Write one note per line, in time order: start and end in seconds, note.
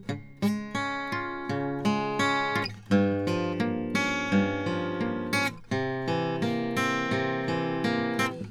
0.00 0.76 C#4
0.11 0.33 G#3
0.44 1.49 G#3
0.76 1.84 C#4
1.14 2.53 F4
1.51 2.65 C#3
1.86 2.71 G#3
2.21 2.70 C#4
2.57 2.68 F4
2.93 4.31 G2
3.29 4.66 F3
3.61 4.98 A#3
3.96 5.32 C#4
4.34 5.64 G2
4.68 5.49 F3
5.02 5.55 A#3
5.34 5.57 C#4
5.73 7.11 C3
6.09 7.46 E3
6.44 7.81 A#3
6.78 8.16 C4
7.13 8.38 C3
7.50 8.35 E3
7.86 8.34 A#3
8.20 8.36 C4